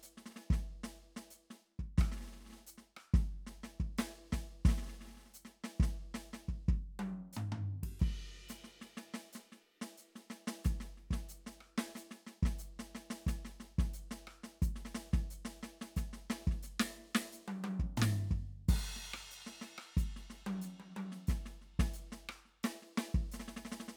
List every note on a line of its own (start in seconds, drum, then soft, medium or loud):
0.04 hi-hat pedal medium
0.18 snare soft
0.27 snare soft
0.32 snare soft
0.37 snare soft
0.51 kick medium
0.51 snare soft
0.84 snare medium
1.17 snare soft
1.31 hi-hat pedal medium
1.51 snare soft
1.80 kick soft
1.98 kick medium
1.98 cross-stick medium
1.98 snare medium
2.13 snare soft
2.18 snare soft
2.21 snare soft
2.24 snare soft
2.28 snare soft
2.33 snare soft
2.37 snare soft
2.41 snare soft
2.45 snare soft
2.47 snare soft
2.50 snare soft
2.53 snare soft
2.58 snare soft
2.61 snare soft
2.68 hi-hat pedal medium
2.78 snare soft
2.97 cross-stick medium
3.15 kick medium
3.15 snare soft
3.47 snare soft
3.64 snare soft
3.81 kick medium
3.99 snare medium
3.99 hi-hat pedal medium
4.33 kick medium
4.33 snare medium
4.66 kick medium
4.66 snare medium
4.69 snare medium
4.72 snare soft
4.79 snare soft
4.83 snare soft
4.87 snare soft
4.89 snare soft
4.95 snare soft
5.00 snare soft
5.01 snare soft
5.05 snare soft
5.08 snare soft
5.11 snare soft
5.18 snare soft
5.20 snare soft
5.23 snare soft
5.26 snare soft
5.30 snare soft
5.35 hi-hat pedal medium
5.46 snare soft
5.65 snare medium
5.81 kick medium
5.81 snare medium
6.15 snare medium
6.34 snare soft
6.49 kick soft
6.69 kick medium
7.00 high tom loud
7.34 floor tom medium
7.34 hi-hat pedal medium
7.53 floor tom medium
7.84 kick soft
7.84 ride medium
8.00 kick medium
8.00 crash medium
8.50 snare soft
8.50 hi-hat pedal medium
8.65 snare soft
8.82 snare soft
8.98 snare soft
9.15 snare medium
9.34 snare soft
9.34 hi-hat pedal medium
9.53 snare soft
9.82 snare medium
9.98 hi-hat pedal medium
10.16 snare soft
10.31 snare soft
10.48 snare medium
10.65 kick medium
10.65 snare soft
10.65 hi-hat pedal medium
10.81 snare soft
10.98 snare soft
11.12 kick medium
11.12 snare medium
11.30 hi-hat pedal medium
11.47 snare soft
11.47 hi-hat pedal soft
11.61 cross-stick soft
11.79 snare medium
11.96 snare soft
11.96 hi-hat pedal medium
12.12 snare soft
12.27 snare soft
12.43 kick medium
12.43 snare medium
12.59 hi-hat pedal medium
12.80 snare medium
12.80 hi-hat pedal soft
12.96 snare soft
13.11 snare medium
13.27 kick medium
13.27 snare soft
13.27 hi-hat pedal medium
13.46 snare soft
13.61 snare soft
13.79 kick medium
13.79 snare soft
13.94 hi-hat pedal medium
14.12 snare medium
14.28 cross-stick medium
14.44 snare soft
14.63 kick medium
14.63 hi-hat pedal medium
14.77 snare soft
14.86 snare soft
14.95 snare medium
15.14 kick medium
15.14 snare soft
15.31 hi-hat pedal medium
15.46 snare medium
15.64 snare soft
15.82 snare medium
15.97 kick medium
15.97 snare soft
15.97 hi-hat pedal medium
16.14 snare soft
16.31 snare medium
16.48 kick medium
16.48 snare soft
16.63 snare soft
16.63 hi-hat pedal medium
16.80 snare loud
16.80 hi-hat pedal soft
17.16 snare loud
17.33 hi-hat pedal medium
17.49 high tom medium
17.65 high tom loud
17.80 kick medium
17.98 floor tom loud
17.98 hi-hat pedal medium
18.03 snare medium
18.32 kick medium
18.69 kick medium
18.69 hi-hat pedal medium
18.69 crash medium
18.97 snare soft
19.14 cross-stick medium
19.32 hi-hat pedal medium
19.47 snare soft
19.62 snare soft
19.79 cross-stick medium
19.98 kick medium
19.98 hi-hat pedal medium
20.17 snare soft
20.31 snare soft
20.47 high tom loud
20.62 snare soft
20.62 hi-hat pedal medium
20.81 high tom medium
20.97 high tom medium
21.13 snare soft
21.28 kick medium
21.28 snare soft
21.28 hi-hat pedal medium
21.46 snare soft
21.62 snare soft
21.80 kick medium
21.80 snare medium
21.94 hi-hat pedal medium
22.13 snare soft
22.30 cross-stick medium
22.46 snare soft
22.64 snare medium
22.64 hi-hat pedal medium
22.83 snare soft
22.83 hi-hat pedal soft
22.98 snare medium
23.15 kick medium
23.32 snare soft
23.32 hi-hat pedal medium
23.40 snare soft
23.49 snare soft
23.57 snare soft
23.66 snare soft
23.73 snare medium
23.81 snare soft
23.89 snare soft